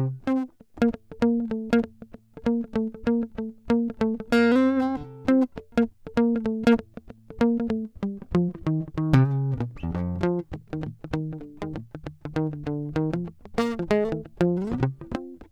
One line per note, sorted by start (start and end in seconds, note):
0.01 0.13 C3
0.28 0.50 C4
0.82 0.93 A#3
1.23 1.52 A#3
1.52 1.72 A3
1.74 1.83 A#3
2.47 2.68 A#3
2.77 2.91 A3
3.08 3.29 A#3
3.39 3.55 A3
3.71 3.95 A#3
4.02 4.18 A3
4.33 4.52 A#3
4.53 4.98 C4
5.29 5.50 C4
5.78 5.90 A#3
6.18 6.37 A#3
6.37 6.46 A3
6.46 6.67 A3
6.68 6.78 A#3
7.42 7.60 A#3
7.61 7.70 A#3
7.71 7.92 A3
8.03 8.19 G3
8.35 8.52 F3
8.67 8.87 D#3
8.98 9.22 D#3
9.14 9.27 C3
9.62 9.70 B2
9.85 9.93 E2
9.96 10.27 F2
10.25 10.45 F3
10.53 10.69 D#3
10.74 10.80 D#3
10.82 10.98 D#3
11.14 11.33 D#3
11.34 11.42 D#3
11.42 11.51 D3
11.63 11.87 D#3
12.37 12.52 D#3
12.54 12.67 D3
12.68 12.93 D3
12.97 13.13 D#3
13.14 13.35 F3
13.59 13.79 A#3
13.80 13.88 E3
13.91 14.05 G#3
14.05 14.12 A3
14.13 14.23 D#3
14.41 14.80 F#3
15.16 15.40 C4